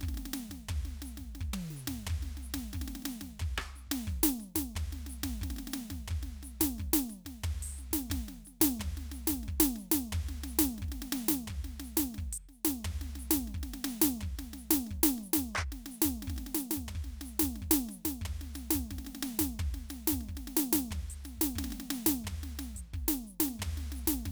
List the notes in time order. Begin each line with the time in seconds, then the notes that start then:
0.01 kick, snare
0.09 snare
0.14 snare
0.17 snare
0.26 snare
0.33 snare, hi-hat pedal
0.49 kick, snare
0.69 kick, floor tom
0.85 snare
1.02 snare, hi-hat pedal
1.17 kick, snare
1.35 snare
1.41 kick
1.54 high tom
1.70 snare
1.76 hi-hat pedal
1.87 kick, snare
2.07 kick, floor tom
2.23 snare
2.37 snare
2.43 hi-hat pedal
2.54 kick, snare
2.73 kick, snare
2.81 snare
2.88 snare
2.95 snare
3.02 snare
3.05 snare
3.10 hi-hat pedal
3.21 kick, snare
3.40 kick, floor tom
3.58 cross-stick
3.76 snare, hi-hat pedal
3.87 kick
3.91 snare
4.07 kick, snare
4.23 snare
4.40 snare, hi-hat pedal
4.55 kick, snare
4.76 kick, floor tom
4.93 snare
5.06 snare, hi-hat pedal
5.23 kick, snare
5.41 kick, snare
5.50 snare
5.56 snare
5.59 snare
5.67 snare
5.72 snare, hi-hat pedal
5.90 kick, snare
6.08 kick, floor tom
6.23 snare
6.43 snare, hi-hat pedal
6.60 kick, snare
6.78 kick, snare
6.93 snare
7.10 snare, hi-hat pedal
7.25 kick, snare
7.44 kick, floor tom
7.62 open hi-hat
7.77 snare, hi-hat pedal
7.91 kick, snare
8.01 snare
8.10 kick, snare
8.28 snare
8.45 snare, hi-hat pedal
8.61 kick, snare
8.68 snare
8.80 kick, floor tom
8.97 snare
9.12 snare, hi-hat pedal
9.27 kick, snare
9.43 snare
9.48 kick
9.60 snare
9.76 snare, hi-hat pedal
9.92 kick, snare
10.12 kick, floor tom
10.29 snare
10.44 snare
10.48 hi-hat pedal
10.59 kick, snare
10.78 kick, snare
10.88 snare
10.92 snare
11.02 snare
11.12 snare
11.17 hi-hat pedal
11.29 kick, snare
11.47 kick, floor tom
11.64 snare
11.80 snare
11.84 hi-hat pedal
11.97 kick, snare
12.14 kick, snare
12.33 closed hi-hat
12.49 snare, hi-hat pedal
12.65 kick, snare
12.85 kick, floor tom
13.01 snare
13.15 snare, hi-hat pedal
13.31 kick, snare
13.47 snare
13.54 kick, snare
13.63 snare
13.74 snare
13.84 snare, hi-hat pedal
14.02 kick, snare
14.21 kick, floor tom
14.39 snare
14.53 snare
14.58 hi-hat pedal
14.71 kick, snare
14.87 snare
14.91 kick
15.03 snare
15.18 snare
15.23 hi-hat pedal
15.33 kick, snare
15.55 kick, percussion
15.72 snare
15.86 snare
15.91 hi-hat pedal
16.02 kick, snare
16.22 snare
16.27 kick, snare
16.36 snare
16.38 snare
16.55 snare, hi-hat pedal
16.71 snare
16.77 kick
16.88 floor tom
16.95 kick
17.04 snare
17.21 snare
17.25 hi-hat pedal
17.39 kick, snare
17.56 snare
17.62 kick
17.71 snare
17.89 snare, hi-hat pedal
18.05 kick, snare
18.21 kick, floor tom
18.41 snare
18.54 snare, hi-hat pedal
18.71 snare
18.75 kick
18.91 kick, snare
18.98 snare
19.05 snare
19.07 snare
19.23 snare, hi-hat pedal
19.39 kick, snare
19.59 kick, floor tom
19.74 snare
19.89 snare, hi-hat pedal
20.07 snare
20.12 kick
20.21 snare
20.29 kick, snare
20.35 snare
20.37 snare
20.47 snare
20.57 snare, hi-hat pedal
20.73 kick, snare
20.91 kick, floor tom
21.10 open hi-hat
21.24 snare, hi-hat pedal
21.37 kick
21.41 snare
21.56 kick, snare
21.64 snare
21.71 snare
21.72 snare
21.80 snare
21.90 snare, hi-hat pedal
22.06 kick, snare
22.24 kick, floor tom
22.43 snare
22.59 snare, hi-hat pedal
22.75 closed hi-hat, kick
22.94 kick, snare
23.08 snare
23.25 snare, hi-hat pedal
23.40 kick, snare
23.48 snare
23.59 kick, floor tom
23.77 snare
23.92 snare, hi-hat pedal
24.06 kick, snare
24.26 kick, snare